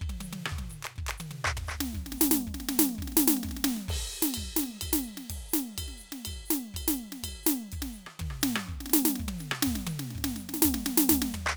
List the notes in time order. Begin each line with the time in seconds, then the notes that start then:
0.02 kick
0.08 kick, high tom
0.13 kick
0.21 hi-hat pedal, high tom
0.33 high tom
0.46 cross-stick
0.52 kick
0.59 kick, high tom
0.70 hi-hat pedal, mid tom
0.83 percussion
0.96 kick, mid tom
1.06 kick, percussion
1.18 hi-hat pedal, mid tom
1.32 mid tom
1.45 kick, percussion
1.54 kick, floor tom
1.68 percussion, hi-hat pedal
1.81 snare
1.94 kick, snare
1.99 kick, snare
2.02 snare
2.07 snare
2.13 snare
2.18 snare, hi-hat pedal
2.32 snare
2.42 snare
2.48 kick, snare
2.55 snare
2.61 snare
2.69 snare, hi-hat pedal
2.80 snare
2.90 snare
2.96 kick, snare
3.02 kick, snare
3.08 snare
3.13 snare
3.18 snare, hi-hat pedal
3.28 snare
3.37 snare
3.44 kick, snare
3.49 kick, snare
3.52 snare
3.57 snare
3.65 snare, hi-hat pedal
3.77 snare
3.89 kick, crash
3.94 kick
4.03 kick
4.12 hi-hat pedal
4.23 snare
4.35 kick, ride bell
4.44 kick
4.57 snare, hi-hat pedal
4.64 snare
4.82 kick, ride bell
4.89 kick
4.94 snare
5.04 hi-hat pedal, ride
5.18 snare
5.30 kick, ride
5.50 hi-hat pedal
5.54 snare
5.79 kick, ride bell
5.85 kick, snare
5.98 hi-hat pedal, ride
6.13 snare
6.26 kick, ride bell
6.34 kick
6.46 hi-hat pedal
6.51 snare
6.75 kick, ride bell
6.81 kick
6.89 snare
6.94 hi-hat pedal
6.99 ride
7.13 snare
7.24 kick, ride bell
7.30 kick
7.44 snare, hi-hat pedal
7.73 kick, ride bell
7.80 kick, snare
7.93 hi-hat pedal
8.07 cross-stick, closed hi-hat
8.20 kick, mid tom
8.28 kick, cross-stick
8.42 snare, hi-hat pedal
8.56 cross-stick
8.67 kick, snare
8.73 snare
8.81 snare
8.87 snare
8.90 snare, hi-hat pedal
8.94 snare
9.06 snare
9.16 kick, snare
9.27 kick, high tom
9.39 snare, hi-hat pedal
9.52 cross-stick
9.63 snare
9.67 kick
9.74 kick, snare
9.88 hi-hat pedal, mid tom
10.00 snare
10.11 snare
10.16 kick, snare
10.25 snare
10.37 snare, hi-hat pedal
10.50 snare
10.55 snare
10.63 kick, snare
10.75 snare
10.85 snare, hi-hat pedal
10.98 snare
11.10 kick, snare
11.23 snare
11.33 floor tom, hi-hat pedal
11.47 percussion